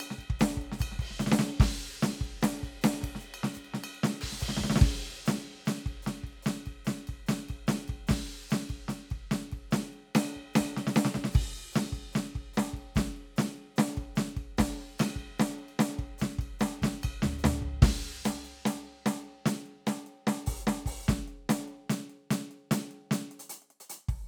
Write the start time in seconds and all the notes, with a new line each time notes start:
0.01 hi-hat pedal, ride bell
0.11 snare
0.19 kick, ride bell
0.31 kick
0.40 snare, hi-hat pedal, ride bell
0.58 kick
0.62 ride bell
0.72 snare
0.79 kick, hi-hat pedal, ride bell
0.92 snare
1.00 kick, ride
1.11 snare
1.20 snare, hi-hat pedal
1.27 snare
1.32 snare
1.40 snare
1.60 kick, snare, crash
1.80 ride
2.02 snare, hi-hat pedal, ride bell
2.22 kick, ride
2.42 snare, hi-hat pedal, ride
2.64 kick, ride bell
2.82 snare, hi-hat pedal, ride
3.02 kick, snare, ride
3.16 snare
3.20 hi-hat pedal
3.25 ride bell
3.35 ride bell
3.44 snare
3.54 kick, hi-hat pedal, ride
3.65 ride bell
3.74 snare
3.84 hi-hat pedal, ride bell
3.96 ride
4.04 snare
4.22 kick, crash
4.33 snare
4.40 kick, hi-hat pedal, ride
4.49 snare
4.57 kick, snare
4.64 snare
4.70 snare
4.76 snare
4.82 kick, crash
5.26 snare, hi-hat pedal, ride bell
5.66 snare, hi-hat pedal, ride bell
5.87 kick, ride
6.03 hi-hat pedal
6.07 snare, ride bell
6.24 kick, ride
6.43 snare, hi-hat pedal
6.48 ride bell
6.67 kick, ride bell
6.85 snare, hi-hat pedal, ride bell
7.08 kick, ride bell
7.27 snare, hi-hat pedal, ride bell
7.49 kick, ride bell
7.68 snare, hi-hat pedal, ride bell
7.89 kick, ride bell
8.08 kick, snare, hi-hat pedal, crash
8.50 snare, hi-hat pedal, ride bell
8.70 kick, ride bell
8.89 snare, hi-hat pedal, ride bell
9.11 kick, ride bell
9.32 snare, hi-hat pedal, ride bell
9.52 kick, ride
9.72 snare, hi-hat pedal, ride bell
9.94 ride
10.15 snare, hi-hat pedal, ride bell
10.35 kick, ride bell
10.54 snare, hi-hat pedal, ride bell
10.61 kick
10.77 snare
10.87 snare
10.94 snare, hi-hat pedal
11.05 snare
11.15 kick, snare
11.25 snare
11.32 kick, hi-hat pedal, crash
11.73 snare, hi-hat pedal, ride bell
11.93 kick, ride
12.13 snare, hi-hat pedal, ride bell
12.36 kick, ride
12.54 snare, hi-hat pedal
12.59 ride bell
12.74 kick, ride
12.96 kick, snare, hi-hat pedal, ride
13.17 ride
13.37 snare, hi-hat pedal, ride
13.57 ride
13.77 snare, hi-hat pedal
13.98 kick, ride bell
14.16 snare, hi-hat pedal
14.37 kick, ride bell
14.58 kick, snare, hi-hat pedal, crash
14.99 snare, hi-hat pedal, ride bell
15.17 kick, ride bell
15.40 snare, hi-hat pedal, ride bell
15.59 ride bell
15.69 ride bell
15.80 snare, hi-hat pedal, ride bell
15.99 kick, ride bell
16.19 kick, snare, hi-hat pedal, ride bell
16.39 kick, ride bell
16.60 snare, hi-hat pedal, ride bell
16.83 kick, snare, ride bell
17.02 kick, hi-hat pedal, ride bell
17.23 snare, floor tom
17.39 hi-hat pedal
17.45 snare, floor tom
17.62 kick
17.83 kick, snare, crash
17.88 hi-hat pedal
18.26 closed hi-hat, snare
18.44 closed hi-hat
18.66 closed hi-hat, snare
18.85 closed hi-hat
19.07 closed hi-hat, snare
19.26 closed hi-hat
19.46 closed hi-hat, snare
19.67 closed hi-hat
19.87 closed hi-hat, snare
20.07 closed hi-hat
20.28 snare
20.47 open hi-hat, kick
20.63 hi-hat pedal
20.68 snare
20.86 open hi-hat, kick
21.07 closed hi-hat, kick, snare, hi-hat pedal
21.28 closed hi-hat
21.50 closed hi-hat, snare
21.68 closed hi-hat
21.90 closed hi-hat, snare
22.10 closed hi-hat
22.30 closed hi-hat, snare, hi-hat pedal
22.52 closed hi-hat
22.72 closed hi-hat, snare
22.92 closed hi-hat
23.12 closed hi-hat, snare
23.32 closed hi-hat
23.40 closed hi-hat
23.50 closed hi-hat
23.63 closed hi-hat
23.71 closed hi-hat
23.81 closed hi-hat
23.89 closed hi-hat, hi-hat pedal
24.09 kick, open hi-hat